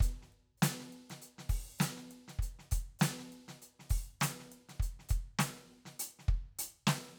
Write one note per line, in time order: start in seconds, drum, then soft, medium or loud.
0.01 closed hi-hat medium
0.01 kick medium
0.23 snare soft
0.33 closed hi-hat soft
0.58 hi-hat pedal soft
0.63 closed hi-hat loud
0.63 snare loud
0.80 snare soft
0.93 closed hi-hat soft
1.10 snare medium
1.10 closed hi-hat soft
1.22 closed hi-hat medium
1.39 snare soft
1.50 open hi-hat medium
1.50 kick medium
1.79 closed hi-hat loud
1.79 snare loud
1.79 hi-hat pedal medium
1.97 snare soft
2.12 closed hi-hat soft
2.29 snare soft
2.29 closed hi-hat soft
2.39 closed hi-hat medium
2.39 kick soft
2.60 snare soft
2.72 open hi-hat medium
2.72 kick medium
3.00 closed hi-hat loud
3.00 snare loud
3.00 hi-hat pedal medium
3.19 snare soft
3.33 closed hi-hat soft
3.49 snare soft
3.49 closed hi-hat soft
3.62 closed hi-hat soft
3.80 snare soft
3.90 open hi-hat medium
3.90 kick medium
4.21 closed hi-hat loud
4.21 snare loud
4.21 hi-hat pedal medium
4.40 snare soft
4.52 closed hi-hat soft
4.69 snare soft
4.69 closed hi-hat soft
4.80 closed hi-hat medium
4.80 kick medium
5.00 snare soft
5.09 closed hi-hat medium
5.09 kick medium
5.39 closed hi-hat loud
5.39 snare loud
5.57 snare soft
5.86 snare soft
6.00 closed hi-hat loud
6.20 snare soft
6.29 kick medium
6.29 closed hi-hat soft
6.57 closed hi-hat loud
6.57 snare soft
6.88 snare loud
6.88 closed hi-hat soft
7.08 snare soft